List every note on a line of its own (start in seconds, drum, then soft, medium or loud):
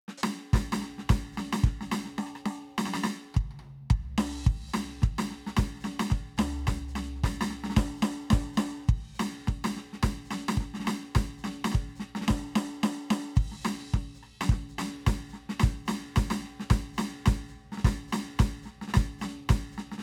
0.08 snare soft
0.17 hi-hat pedal medium
0.23 snare loud
0.37 snare soft
0.53 kick loud
0.53 snare loud
0.72 snare loud
0.72 hi-hat pedal medium
0.82 snare medium
0.98 snare medium
1.09 kick loud
1.09 snare loud
1.25 snare soft
1.32 hi-hat pedal medium
1.37 snare loud
1.53 snare loud
1.64 kick loud
1.64 snare medium
1.81 snare medium
1.81 hi-hat pedal medium
1.92 snare loud
2.05 snare soft
2.18 snare medium
2.26 cross-stick medium
2.35 cross-stick medium
2.46 snare loud
2.78 snare loud
2.86 snare loud
2.94 snare loud
3.04 snare loud
3.34 kick loud
3.34 high tom medium
3.41 high tom medium
3.51 high tom medium
3.59 high tom medium
3.90 kick loud
3.90 floor tom loud
4.18 snare loud
4.18 crash loud
4.46 kick loud
4.63 snare soft
4.68 hi-hat pedal medium
4.74 snare loud
4.89 snare soft
5.02 kick loud
5.02 snare medium
5.18 snare loud
5.18 hi-hat pedal medium
5.30 snare soft
5.46 snare medium
5.57 kick loud
5.57 snare loud
5.76 snare soft
5.80 snare loud
5.80 hi-hat pedal medium
5.99 snare loud
6.10 kick loud
6.10 snare medium
6.37 snare loud
6.37 floor tom loud
6.37 hi-hat pedal medium
6.67 kick medium
6.67 snare loud
6.88 hi-hat pedal medium
6.95 snare loud
7.15 snare soft
7.24 kick medium
7.24 snare loud
7.41 snare loud
7.41 hi-hat pedal medium
7.50 snare medium
7.64 snare medium
7.70 snare medium
7.75 kick loud
7.75 snare soft
7.75 snare loud
7.85 snare soft
7.91 snare soft
7.96 snare soft
7.96 hi-hat pedal medium
8.01 snare soft
8.02 snare loud
8.09 cross-stick soft
8.21 snare soft
8.30 kick loud
8.30 snare loud
8.39 cross-stick soft
8.43 snare soft
8.46 snare soft
8.53 hi-hat pedal medium
8.57 snare loud
8.66 snare soft
8.71 snare soft
8.76 snare soft
8.80 snare soft
8.88 kick loud
8.88 crash medium
9.14 hi-hat pedal medium
9.19 snare loud
9.47 kick medium
9.47 snare medium
9.64 snare loud
9.64 hi-hat pedal medium
9.76 snare medium
9.93 snare soft
10.03 kick medium
10.03 snare loud
10.25 hi-hat pedal medium
10.31 snare loud
10.48 snare loud
10.57 kick medium
10.57 snare medium
10.74 snare medium
10.74 hi-hat pedal medium
10.80 snare medium
10.85 snare medium
10.87 snare loud
11.03 snare soft
11.15 kick loud
11.15 snare loud
11.27 snare soft
11.32 snare soft
11.38 hi-hat pedal medium
11.44 snare loud
11.64 snare loud
11.71 kick loud
11.71 snare medium
11.88 snare soft
11.95 hi-hat pedal medium
12.00 snare medium
12.15 snare medium
12.21 snare medium
12.27 kick medium
12.27 snare medium
12.27 snare loud
12.37 snare soft
12.41 snare soft
12.45 snare soft
12.48 snare soft
12.55 snare loud
12.64 snare soft
12.73 snare soft
12.83 snare loud
12.93 snare soft
12.99 snare soft
13.10 snare loud
13.20 snare soft
13.23 snare soft
13.25 snare soft
13.36 kick loud
13.36 crash loud
13.52 snare medium
13.61 snare loud
13.61 hi-hat pedal medium
13.78 snare soft
13.94 kick medium
13.94 snare medium
14.14 hi-hat pedal medium
14.23 cross-stick soft
14.41 snare loud
14.49 kick loud
14.49 snare medium
14.69 hi-hat pedal medium
14.78 snare loud
15.07 kick loud
15.07 snare loud
15.28 hi-hat pedal medium
15.33 snare soft
15.49 snare medium
15.60 kick loud
15.60 snare loud
15.85 snare loud
15.85 hi-hat pedal medium
16.16 kick loud
16.16 snare loud
16.30 snare loud
16.34 hi-hat pedal medium
16.44 snare soft
16.60 snare medium
16.70 kick loud
16.70 snare loud
16.94 hi-hat pedal medium
16.98 snare loud
17.26 kick loud
17.26 snare loud
17.48 hi-hat pedal medium
17.72 snare medium
17.77 snare medium
17.82 kick loud
17.82 snare soft
17.85 snare loud
18.08 hi-hat pedal medium
18.13 snare loud
18.39 kick loud
18.39 snare loud
18.62 snare soft
18.62 hi-hat pedal medium
18.81 snare medium
18.88 snare medium
18.94 kick loud
18.94 snare loud
19.19 snare loud
19.19 hi-hat pedal medium
19.49 kick loud
19.49 snare loud
19.72 hi-hat pedal medium
19.78 snare medium
19.92 snare medium
19.98 snare medium